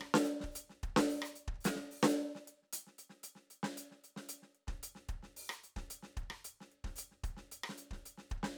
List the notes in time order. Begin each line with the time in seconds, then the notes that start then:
0.01 cross-stick
0.14 snare
0.24 snare, hi-hat pedal
0.40 kick, snare
0.51 kick, hi-hat pedal
0.55 closed hi-hat
0.70 snare
0.83 kick, closed hi-hat
0.90 kick
0.96 snare
1.09 open hi-hat
1.22 cross-stick, hi-hat pedal
1.35 closed hi-hat
1.48 kick
1.54 kick
1.61 closed hi-hat, hi-hat pedal
1.65 snare
1.75 snare
1.91 open hi-hat
2.03 snare
2.09 hi-hat pedal
2.35 snare
2.47 closed hi-hat
2.62 snare
2.73 closed hi-hat
2.87 snare
2.98 closed hi-hat
3.10 snare
3.23 closed hi-hat
3.35 snare
3.50 closed hi-hat
3.63 snare
3.77 closed hi-hat
3.91 snare
4.04 closed hi-hat
4.16 snare
4.29 closed hi-hat
4.42 snare
4.55 closed hi-hat
4.67 kick, snare
4.83 closed hi-hat
4.95 snare
5.09 kick, closed hi-hat
5.23 snare
5.37 open hi-hat
5.49 cross-stick, hi-hat pedal
5.64 closed hi-hat
5.76 kick, snare
5.90 closed hi-hat
6.03 snare
6.17 kick, closed hi-hat
6.23 kick
6.30 cross-stick
6.45 closed hi-hat
6.61 snare
6.72 closed hi-hat
6.84 kick, snare
6.96 closed hi-hat, hi-hat pedal
7.11 snare
7.24 closed hi-hat, kick
7.31 kick
7.37 snare
7.52 closed hi-hat
7.64 cross-stick
7.69 snare
7.78 closed hi-hat
7.91 kick, snare
8.06 closed hi-hat
8.18 snare
8.30 closed hi-hat, kick
8.38 kick
8.43 snare